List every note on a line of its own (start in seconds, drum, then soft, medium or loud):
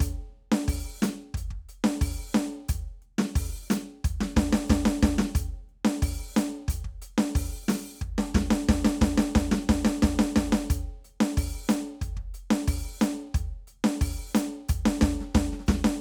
0.01 closed hi-hat loud
0.01 kick loud
0.52 snare loud
0.68 open hi-hat loud
0.68 kick loud
1.01 closed hi-hat loud
1.01 snare loud
1.01 hi-hat pedal medium
1.35 closed hi-hat medium
1.35 kick loud
1.51 kick medium
1.69 closed hi-hat medium
1.85 snare loud
2.02 open hi-hat loud
2.02 kick loud
2.33 snare loud
2.33 hi-hat pedal medium
2.69 closed hi-hat loud
2.69 kick loud
3.03 closed hi-hat soft
3.19 snare loud
3.36 open hi-hat loud
3.36 kick loud
3.68 closed hi-hat loud
3.68 snare loud
3.68 hi-hat pedal soft
4.05 closed hi-hat loud
4.05 kick loud
4.21 snare loud
4.37 kick loud
4.37 snare loud
4.53 snare loud
4.68 kick loud
4.68 snare loud
4.68 hi-hat pedal medium
4.86 snare loud
5.01 kick loud
5.01 snare loud
5.01 hi-hat pedal soft
5.19 snare loud
5.36 closed hi-hat loud
5.36 kick loud
5.70 closed hi-hat soft
5.85 snare loud
5.92 cross-stick soft
6.03 open hi-hat loud
6.03 kick loud
6.35 closed hi-hat loud
6.35 snare loud
6.35 hi-hat pedal medium
6.69 closed hi-hat loud
6.69 kick loud
6.85 kick medium
7.02 closed hi-hat medium
7.18 snare loud
7.36 open hi-hat loud
7.36 kick loud
7.69 open hi-hat loud
7.69 snare loud
7.95 snare soft
7.99 kick medium
7.99 hi-hat pedal soft
8.19 snare loud
8.35 kick loud
8.35 snare loud
8.51 snare loud
8.69 kick loud
8.69 snare loud
8.85 snare loud
9.02 kick loud
9.02 snare loud
9.18 snare loud
9.36 kick loud
9.36 snare loud
9.52 snare loud
9.70 kick loud
9.70 snare loud
9.85 snare loud
10.03 kick loud
10.03 snare loud
10.20 snare loud
10.37 kick medium
10.37 snare loud
10.53 snare loud
10.71 closed hi-hat loud
10.71 kick loud
11.05 closed hi-hat soft
11.21 snare loud
11.38 open hi-hat loud
11.38 kick loud
11.69 closed hi-hat loud
11.69 snare loud
11.69 hi-hat pedal medium
12.02 closed hi-hat medium
12.02 kick loud
12.17 kick medium
12.22 crash soft
12.35 closed hi-hat medium
12.51 snare loud
12.68 open hi-hat loud
12.68 kick loud
13.00 closed hi-hat medium
13.00 snare loud
13.00 hi-hat pedal medium
13.35 closed hi-hat medium
13.35 kick loud
13.68 closed hi-hat medium
13.85 snare loud
14.02 open hi-hat loud
14.02 kick loud
14.32 snare loud
14.32 hi-hat pedal medium
14.36 closed hi-hat loud
14.69 closed hi-hat loud
14.69 kick loud
14.86 snare loud
15.02 kick loud
15.02 snare loud
15.21 snare soft
15.30 snare soft
15.32 kick loud
15.32 snare soft
15.32 hi-hat pedal medium
15.36 snare loud
15.53 snare soft
15.60 snare soft
15.67 kick loud
15.67 snare loud
15.67 hi-hat pedal medium
15.85 snare loud